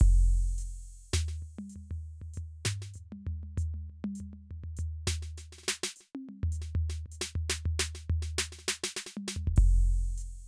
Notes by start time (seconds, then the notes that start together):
0.00 kick, crash
0.58 hi-hat pedal
1.13 snare, floor tom, hi-hat pedal
1.28 snare
1.42 floor tom
1.58 mid tom
1.70 hi-hat pedal
1.76 floor tom
1.91 floor tom
2.21 floor tom
2.34 floor tom, hi-hat pedal
2.65 snare, floor tom
2.82 snare
2.94 floor tom, hi-hat pedal
3.12 mid tom
3.27 floor tom
3.43 mid tom
3.58 floor tom, hi-hat pedal
3.74 mid tom
3.90 floor tom
4.04 mid tom
4.15 hi-hat pedal
4.20 floor tom
4.33 mid tom
4.51 floor tom
4.64 floor tom
4.77 floor tom, hi-hat pedal
5.07 snare, floor tom
5.22 snare
5.38 snare, hi-hat pedal
5.52 snare
5.58 snare
5.63 snare
5.68 snare
5.83 snare
5.96 hi-hat pedal
6.00 snare
6.15 high tom
6.29 mid tom
6.43 floor tom
6.52 hi-hat pedal
6.62 snare
6.75 floor tom
6.90 snare
7.06 floor tom
7.12 hi-hat pedal
7.21 snare
7.35 floor tom
7.50 snare
7.66 floor tom
7.79 snare, hi-hat pedal
7.95 snare
8.10 floor tom
8.22 snare
8.38 snare, hi-hat pedal
8.52 snare
8.59 snare
8.68 snare
8.84 snare
8.96 snare, hi-hat pedal
9.06 snare
9.17 mid tom
9.28 snare
9.36 floor tom
9.47 kick, floor tom
9.56 kick, crash
10.18 hi-hat pedal